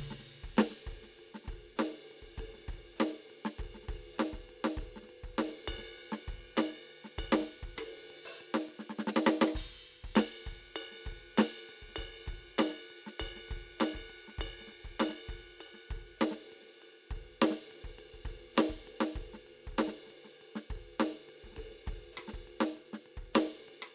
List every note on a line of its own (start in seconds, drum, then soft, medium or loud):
0.01 kick soft
0.10 snare soft
0.19 snare soft
0.43 kick soft
0.57 snare loud
0.57 hi-hat pedal medium
0.57 ride loud
0.70 snare soft
0.86 kick soft
0.86 ride medium
0.92 kick soft
1.03 snare soft
1.17 hi-hat pedal soft
1.17 ride soft
1.34 snare soft
1.44 kick soft
1.44 snare soft
1.44 ride medium
1.54 kick soft
1.76 snare medium
1.76 hi-hat pedal medium
1.76 ride loud
2.11 ride soft
2.22 kick soft
2.22 snare soft
2.35 kick soft
2.35 snare soft
2.35 hi-hat pedal soft
2.39 ride medium
2.48 kick soft
2.54 snare soft
2.57 snare soft
2.60 snare soft
2.68 kick soft
2.68 ride medium
2.74 kick soft
2.96 hi-hat pedal medium
2.96 ride loud
3.00 snare loud
3.30 ride medium
3.45 snare medium
3.58 kick soft
3.58 hi-hat pedal soft
3.58 ride medium
3.66 kick soft
3.74 snare soft
3.83 snare soft
3.88 kick medium
3.88 ride medium
3.95 kick soft
4.14 hi-hat pedal medium
4.18 snare medium
4.18 ride medium
4.33 kick soft
4.33 snare soft
4.38 kick soft
4.44 hi-hat pedal soft
4.49 ride medium
4.64 snare medium
4.74 kick soft
4.74 hi-hat pedal soft
4.78 ride medium
4.84 kick soft
4.96 snare soft
5.03 snare soft
5.09 ride medium
5.23 kick soft
5.38 snare medium
5.38 hi-hat pedal medium
5.38 ride loud
5.48 snare soft
5.67 kick soft
5.67 ride bell loud
5.75 kick soft
5.75 snare soft
5.95 hi-hat pedal soft
5.95 ride soft
6.12 snare medium
6.28 kick soft
6.28 ride medium
6.34 kick soft
6.38 kick soft
6.55 snare loud
6.55 hi-hat pedal medium
6.55 ride bell loud
6.88 ride soft
7.04 snare soft
7.18 kick soft
7.18 ride bell loud
7.24 kick soft
7.32 snare loud
7.41 snare soft
7.48 ride soft
7.62 kick soft
7.68 kick soft
7.76 cross-stick medium
7.76 hi-hat pedal medium
7.76 ride loud
8.10 ride medium
8.25 open hi-hat loud
8.41 ride medium
8.54 snare medium
8.65 hi-hat pedal soft
8.65 ride medium
8.79 snare soft
8.89 snare soft
8.98 snare medium
9.07 snare medium
9.16 snare loud
9.26 snare loud
9.41 snare loud
9.47 cross-stick medium
9.55 kick medium
9.55 crash medium
9.82 hi-hat pedal soft
10.04 kick soft
10.15 snare loud
10.15 hi-hat pedal medium
10.15 ride bell loud
10.44 kick soft
10.44 ride soft
10.53 kick soft
10.53 snare soft
10.60 snare soft
10.76 hi-hat pedal soft
10.76 ride bell loud
10.91 snare soft
10.94 snare soft
11.05 kick soft
11.05 ride medium
11.12 kick soft
11.37 snare loud
11.37 hi-hat pedal medium
11.37 ride bell loud
11.69 ride medium
11.82 kick soft
11.89 snare soft
11.95 kick soft
11.95 snare soft
11.95 hi-hat pedal soft
11.95 ride bell loud
12.09 kick soft
12.26 kick soft
12.26 ride medium
12.33 kick soft
12.58 snare loud
12.58 hi-hat pedal medium
12.58 ride bell loud
12.69 snare soft
12.90 ride soft
13.06 snare soft
13.19 kick soft
13.19 hi-hat pedal soft
13.19 ride bell loud
13.27 kick soft
13.36 snare soft
13.48 kick medium
13.48 ride medium
13.58 kick soft
13.78 snare loud
13.78 hi-hat pedal medium
13.78 ride bell loud
13.93 kick soft
13.93 snare soft
14.05 hi-hat pedal soft
14.10 ride medium
14.28 snare soft
14.37 kick medium
14.37 hi-hat pedal soft
14.41 ride bell loud
14.46 kick soft
14.60 snare soft
14.67 snare soft
14.72 ride soft
14.84 kick soft
15.00 snare loud
15.00 hi-hat pedal medium
15.00 ride bell loud
15.09 snare soft
15.28 kick soft
15.28 ride medium
15.35 kick soft
15.39 snare soft
15.59 hi-hat pedal soft
15.59 ride bell medium
15.74 snare soft
15.81 cross-stick soft
15.88 kick medium
15.88 snare soft
15.88 ride medium
15.97 kick soft
16.01 kick soft
16.17 snare loud
16.17 hi-hat pedal medium
16.21 ride loud
16.31 snare soft
16.52 ride medium
16.62 snare soft
16.66 snare soft
16.82 ride bell soft
17.11 kick medium
17.11 ride medium
17.24 kick soft
17.42 snare loud
17.42 hi-hat pedal medium
17.42 ride loud
17.50 snare soft
17.71 ride medium
17.84 kick soft
17.98 ride medium
18.14 kick soft
18.14 cross-stick soft
18.25 kick soft
18.25 ride medium
18.48 kick soft
18.55 snare loud
18.55 hi-hat pedal medium
18.55 ride loud
18.69 kick soft
18.87 ride medium
19.00 snare loud
19.15 kick soft
19.15 ride medium
19.33 snare soft
19.46 ride soft
19.67 kick soft
19.73 kick soft
19.78 snare loud
19.78 hi-hat pedal loud
19.78 ride loud
19.87 snare soft
20.06 snare soft
20.06 ride soft
20.24 snare soft
20.41 ride medium
20.55 snare medium
20.70 kick soft
20.70 ride medium
20.77 kick soft
20.99 snare loud
20.99 hi-hat pedal loud
20.99 ride loud
21.29 ride medium
21.43 kick soft
21.43 snare soft
21.52 snare soft
21.56 kick soft
21.56 snare soft
21.56 hi-hat pedal soft
21.56 ride medium
21.68 kick soft
21.68 snare soft
21.74 snare soft
21.86 kick medium
21.86 snare soft
21.86 ride medium
21.95 kick soft
22.12 hi-hat pedal medium
22.17 cross-stick medium
22.17 ride medium
22.28 snare soft
22.33 kick soft
22.44 hi-hat pedal soft
22.44 ride medium
22.60 snare loud
22.75 hi-hat pedal soft
22.75 ride soft
22.93 snare soft
23.06 ride medium
23.17 kick soft
23.33 snare loud
23.33 hi-hat pedal medium
23.33 ride loud
23.46 snare soft
23.68 ride medium
23.82 cross-stick medium